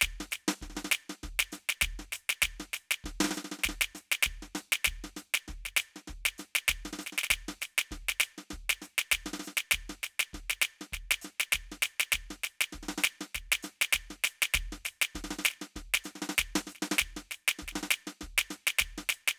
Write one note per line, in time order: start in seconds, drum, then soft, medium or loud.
0.01 kick soft
0.01 snare loud
0.20 snare medium
0.31 snare medium
0.31 hi-hat pedal medium
0.48 snare loud
0.61 kick soft
0.61 snare soft
0.69 snare soft
0.75 snare soft
0.75 snare medium
0.84 snare medium
0.91 snare loud
0.91 hi-hat pedal medium
1.09 snare medium
1.23 kick soft
1.23 snare soft
1.39 snare loud
1.52 snare soft
1.52 hi-hat pedal medium
1.69 snare medium
1.81 kick soft
1.81 snare loud
1.99 snare soft
2.12 snare medium
2.12 hi-hat pedal medium
2.29 snare medium
2.42 kick soft
2.42 snare loud
2.59 snare soft
2.73 snare medium
2.73 hi-hat pedal medium
2.91 snare medium
3.04 kick soft
3.04 snare soft
3.20 snare loud
3.24 snare medium
3.28 snare soft
3.30 snare medium
3.30 hi-hat pedal medium
3.37 snare medium
3.44 snare soft
3.51 snare medium
3.58 snare soft
3.63 kick soft
3.63 snare loud
3.81 snare loud
3.95 snare soft
3.95 hi-hat pedal medium
4.11 snare loud
4.22 kick soft
4.22 snare loud
4.42 snare soft
4.55 snare medium
4.55 hi-hat pedal medium
4.72 snare loud
4.84 kick soft
4.84 snare loud
5.04 snare soft
5.16 snare soft
5.16 hi-hat pedal medium
5.34 snare loud
5.48 kick soft
5.48 snare soft
5.65 snare medium
5.76 snare loud
5.76 hi-hat pedal medium
5.96 snare soft
6.07 kick soft
6.07 snare soft
6.25 snare loud
6.38 snare soft
6.38 hi-hat pedal medium
6.55 snare loud
6.68 kick soft
6.68 snare loud
6.85 snare soft
6.92 snare medium
6.98 snare medium
6.98 hi-hat pedal soft
7.06 snare soft
7.12 snare soft
7.18 snare medium
7.23 snare medium
7.30 kick soft
7.30 snare loud
7.48 snare medium
7.61 snare medium
7.61 hi-hat pedal medium
7.78 snare loud
7.91 kick soft
7.91 snare soft
8.08 snare medium
8.20 snare loud
8.20 hi-hat pedal medium
8.38 snare soft
8.50 kick soft
8.50 snare soft
8.69 snare loud
8.81 snare soft
8.81 hi-hat pedal soft
8.98 snare loud
9.11 kick soft
9.11 snare loud
9.26 snare medium
9.33 snare medium
9.39 snare medium
9.43 snare soft
9.43 hi-hat pedal medium
9.57 snare medium
9.71 kick soft
9.71 snare loud
9.89 snare soft
10.03 snare medium
10.03 hi-hat pedal medium
10.19 snare loud
10.33 kick soft
10.33 snare soft
10.49 snare medium
10.61 snare loud
10.61 hi-hat pedal soft
10.81 snare soft
10.92 kick soft
10.92 snare medium
11.11 snare loud
11.21 snare soft
11.21 hi-hat pedal medium
11.40 snare medium
11.52 kick soft
11.52 snare loud
11.71 snare soft
11.82 snare loud
11.82 hi-hat pedal medium
11.99 snare loud
12.12 kick soft
12.12 snare loud
12.30 snare soft
12.43 snare medium
12.43 hi-hat pedal medium
12.60 snare loud
12.72 kick soft
12.72 snare soft
12.88 snare medium
12.97 snare medium
13.02 snare loud
13.02 hi-hat pedal soft
13.20 snare medium
13.34 kick soft
13.34 snare medium
13.52 snare loud
13.62 snare soft
13.62 hi-hat pedal medium
13.81 snare loud
13.92 kick soft
13.92 snare loud
14.10 snare soft
14.24 snare loud
14.24 hi-hat pedal medium
14.42 snare loud
14.54 kick soft
14.54 snare loud
14.72 snare soft
14.85 snare medium
14.85 hi-hat pedal medium
15.01 snare loud
15.15 kick soft
15.15 snare soft
15.24 snare medium
15.30 snare medium
15.38 snare medium
15.44 snare loud
15.44 hi-hat pedal medium
15.50 snare soft
15.61 snare soft
15.76 kick soft
15.76 snare soft
15.94 snare loud
16.04 snare soft
16.04 hi-hat pedal medium
16.22 snare medium
16.29 snare medium
16.38 kick soft
16.38 snare loud
16.55 snare loud
16.67 snare soft
16.67 hi-hat pedal soft
16.75 snare soft
16.82 snare medium
16.91 snare medium
16.98 kick soft
16.98 snare loud
17.16 snare soft
17.31 snare medium
17.31 hi-hat pedal soft
17.48 snare loud
17.58 kick soft
17.58 snare soft
17.68 snare soft
17.72 snare soft
17.75 snare medium
17.83 snare medium
17.90 snare loud
17.90 hi-hat pedal soft
18.07 snare medium
18.21 kick soft
18.21 snare soft
18.38 snare loud
18.50 snare medium
18.50 hi-hat pedal soft
18.67 snare loud
18.78 kick soft
18.78 snare loud
18.97 snare medium
19.09 snare loud
19.09 hi-hat pedal medium
19.27 snare loud